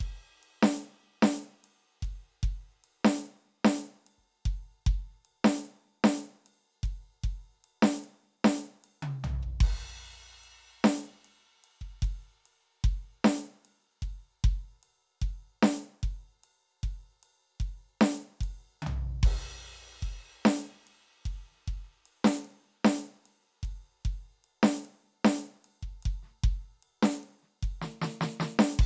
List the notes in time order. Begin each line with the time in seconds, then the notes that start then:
0.01 kick, ride
0.43 ride
0.63 snare
0.77 snare
0.81 ride
1.23 snare, ride
1.65 ride
2.03 kick, ride
2.43 kick, ride
2.84 ride
3.05 snare
3.19 snare
3.26 ride
3.65 snare, ride
4.07 ride
4.19 kick
4.46 kick, ride
4.87 kick, ride
5.10 snare
5.25 ride
5.45 snare
5.66 ride
6.04 snare, ride
6.18 snare
6.46 ride
6.83 kick, ride
7.24 kick, ride
7.54 snare
7.65 ride
7.83 snare
7.96 snare
8.02 snare, ride
8.45 snare, ride
8.84 ride
9.03 high tom
9.24 floor tom
9.43 kick
9.61 kick, ride, crash
10.06 ride
10.44 ride
10.85 snare, ride
11.25 ride
11.64 ride
11.81 kick
12.03 kick, ride
12.46 ride
12.84 kick, ride
13.25 snare, ride
13.65 ride
14.03 kick, ride
14.44 kick, ride
14.83 ride
15.22 kick, ride
15.63 snare
16.03 kick, ride
16.44 ride
16.84 kick, ride
17.23 ride
17.60 kick, ride
18.01 snare, ride
18.41 kick, ride
18.82 high tom
18.87 floor tom
19.23 kick, crash
19.64 ride
20.03 kick, ride
20.46 snare, ride
20.87 ride
21.26 kick, ride
21.52 snare
21.55 snare
21.68 kick, ride
22.06 ride
22.25 snare
22.39 snare
22.43 snare, ride
22.85 snare, ride
23.26 ride
23.63 kick, ride
23.83 snare
24.05 kick, ride
24.45 ride
24.63 snare
24.78 snare
24.85 ride
25.25 snare, ride
25.65 ride
25.83 kick
26.03 kick, ride
26.23 snare
26.26 snare
26.44 kick, ride
26.62 snare
26.83 ride
27.03 snare
27.23 ride
27.43 snare
27.63 kick, ride
27.82 snare
28.02 snare
28.21 snare
28.40 snare
28.59 snare
28.79 kick, crash